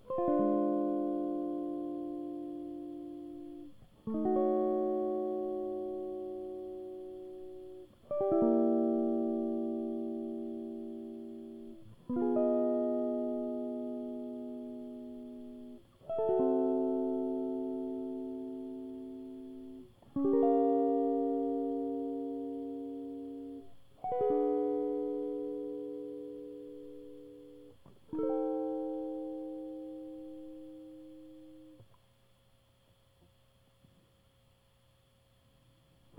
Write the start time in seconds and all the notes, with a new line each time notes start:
0.10 C5
0.17 F4
0.28 D4
0.39 G#3
4.06 A3
4.14 D#4
4.28 F#4
4.37 C#5
8.11 D5
8.19 G4
8.32 E4
8.43 A#3
12.08 B3
12.16 F4
12.21 G#4
12.36 D#5
16.10 E5
16.18 A4
16.29 F#4
16.40 C4
20.15 C#4
20.24 G4
20.34 A#4
20.43 F5
24.04 F#5
24.12 B4
24.23 G#4
24.31 D4
28.14 D#4
28.20 A4
28.24 C5
28.30 G5